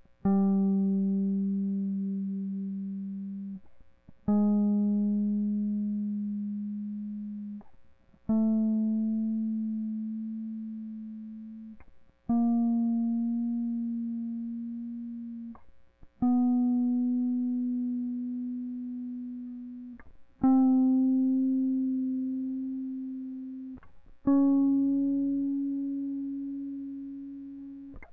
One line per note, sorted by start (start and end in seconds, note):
0.26 3.60 G3
4.29 7.64 G#3
8.30 11.76 A3
12.30 15.57 A#3
16.23 19.98 B3
20.44 23.83 C4
24.28 27.97 C#4